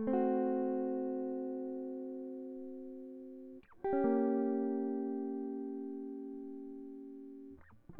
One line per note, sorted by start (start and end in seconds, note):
0.00 2.56 A3
0.08 3.61 C4
0.14 3.61 F#4
3.85 7.58 G4
3.93 7.58 C#4
4.05 7.53 A#3